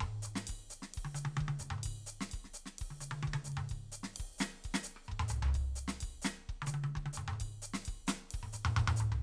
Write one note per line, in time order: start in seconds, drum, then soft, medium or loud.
0.01 kick soft
0.01 mid tom medium
0.23 hi-hat pedal medium
0.23 mid tom soft
0.36 snare medium
0.44 hi-hat pedal soft
0.44 ride bell medium
0.50 kick soft
0.55 kick soft
0.70 hi-hat pedal medium
0.70 ride soft
0.82 snare soft
0.94 kick soft
0.94 ride medium
1.03 kick soft
1.03 high tom medium
1.15 hi-hat pedal medium
1.15 high tom medium
1.25 high tom medium
1.36 hi-hat pedal soft
1.36 high tom loud
1.41 kick soft
1.49 high tom medium
1.59 hi-hat pedal medium
1.59 mid tom medium
1.71 mid tom medium
1.79 mid tom soft
1.84 kick soft
1.84 ride bell medium
2.07 hi-hat pedal loud
2.07 ride soft
2.21 snare medium
2.28 hi-hat pedal soft
2.28 ride bell medium
2.34 kick soft
2.45 snare soft
2.54 hi-hat pedal medium
2.54 ride soft
2.66 snare soft
2.79 kick soft
2.79 ride medium
2.91 high tom medium
3.01 hi-hat pedal medium
3.12 high tom medium
3.23 high tom loud
3.28 kick soft
3.34 high tom loud
3.45 hi-hat pedal medium
3.45 mid tom soft
3.52 ride soft
3.57 mid tom medium
3.70 kick soft
3.70 mid tom soft
3.70 ride bell soft
3.92 hi-hat pedal medium
3.92 ride soft
4.04 snare medium
4.14 hi-hat pedal soft
4.14 ride medium
4.20 kick soft
4.39 snare medium
4.39 hi-hat pedal medium
4.64 kick soft
4.64 ride bell soft
4.74 snare medium
4.84 hi-hat pedal loud
4.84 ride soft
4.97 cross-stick soft
5.04 hi-hat pedal soft
5.09 kick soft
5.09 mid tom medium
5.20 mid tom loud
5.29 floor tom medium
5.29 hi-hat pedal loud
5.43 floor tom loud
5.49 floor tom soft
5.55 kick soft
5.55 ride bell soft
5.61 kick soft
5.76 hi-hat pedal medium
5.76 ride soft
5.88 snare medium
5.97 hi-hat pedal soft
5.97 ride bell medium
6.03 kick soft
6.11 kick soft
6.22 snare medium
6.22 hi-hat pedal medium
6.49 kick soft
6.57 kick soft
6.62 high tom medium
6.67 hi-hat pedal medium
6.67 high tom medium
6.74 high tom medium
6.84 high tom medium
6.96 kick soft
6.96 high tom medium
7.03 kick soft
7.03 high tom medium
7.13 hi-hat pedal medium
7.18 mid tom medium
7.28 mid tom medium
7.34 mid tom soft
7.40 kick soft
7.40 ride bell medium
7.62 hi-hat pedal loud
7.62 ride soft
7.74 snare medium
7.83 hi-hat pedal soft
7.83 ride bell medium
7.88 kick soft
7.94 kick soft
7.96 kick soft
8.07 snare loud
8.07 hi-hat pedal medium
8.29 hi-hat pedal soft
8.29 ride medium
8.34 kick soft
8.40 kick soft
8.40 mid tom medium
8.53 hi-hat pedal medium
8.53 mid tom medium
8.65 mid tom loud
8.73 hi-hat pedal soft
8.73 mid tom loud
8.80 kick soft
8.86 kick soft
8.86 mid tom loud
8.97 floor tom medium
8.97 hi-hat pedal medium
9.12 floor tom medium